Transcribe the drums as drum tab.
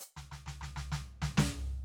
Hi-hat    |p-----------|
Snare     |-ggoooo-oo--|
Floor tom |-oooooo-oo--|